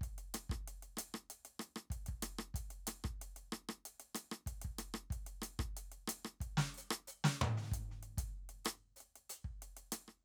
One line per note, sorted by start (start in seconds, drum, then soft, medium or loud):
0.01 kick medium
0.01 closed hi-hat soft
0.18 closed hi-hat soft
0.34 cross-stick medium
0.34 closed hi-hat medium
0.50 kick medium
0.50 cross-stick medium
0.68 closed hi-hat soft
0.83 closed hi-hat soft
0.97 cross-stick medium
0.97 closed hi-hat medium
1.14 cross-stick medium
1.30 closed hi-hat medium
1.45 closed hi-hat soft
1.59 cross-stick medium
1.59 closed hi-hat soft
1.76 cross-stick medium
1.90 kick medium
1.90 closed hi-hat soft
2.06 kick medium
2.06 closed hi-hat soft
2.22 cross-stick medium
2.22 closed hi-hat medium
2.39 cross-stick medium
2.54 kick medium
2.54 closed hi-hat medium
2.70 closed hi-hat soft
2.87 cross-stick medium
2.87 closed hi-hat medium
3.04 kick medium
3.04 cross-stick medium
3.22 closed hi-hat soft
3.36 closed hi-hat soft
3.52 cross-stick medium
3.69 cross-stick medium
3.85 closed hi-hat medium
4.00 closed hi-hat soft
4.15 cross-stick medium
4.15 closed hi-hat medium
4.32 cross-stick medium
4.46 kick medium
4.46 closed hi-hat soft
4.62 kick medium
4.62 closed hi-hat soft
4.79 cross-stick medium
4.79 closed hi-hat medium
4.94 cross-stick medium
5.10 kick medium
5.10 closed hi-hat soft
5.27 closed hi-hat soft
5.42 cross-stick medium
5.42 closed hi-hat medium
5.59 kick medium
5.59 cross-stick medium
5.77 closed hi-hat medium
5.92 closed hi-hat soft
6.08 cross-stick medium
6.08 closed hi-hat medium
6.25 cross-stick medium
6.41 kick medium
6.41 closed hi-hat soft
6.57 snare medium
6.74 hi-hat pedal medium
6.74 open hi-hat soft
6.91 cross-stick medium
7.07 hi-hat pedal medium
7.24 snare medium
7.34 kick soft
7.41 high tom loud
7.57 snare soft
7.62 snare soft
7.65 snare soft
7.69 kick medium
7.69 snare soft
7.74 closed hi-hat medium
7.91 snare soft
8.03 closed hi-hat soft
8.18 kick medium
8.18 closed hi-hat medium
8.49 closed hi-hat soft
8.65 closed hi-hat medium
8.65 cross-stick medium
8.96 hi-hat pedal soft
9.00 closed hi-hat soft
9.16 closed hi-hat soft
9.30 closed hi-hat medium
9.44 kick soft
9.62 closed hi-hat soft
9.77 closed hi-hat soft
9.92 cross-stick medium
9.92 closed hi-hat medium
10.08 cross-stick soft